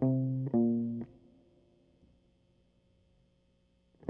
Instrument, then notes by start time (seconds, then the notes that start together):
electric guitar
0.04 C3
0.55 A#2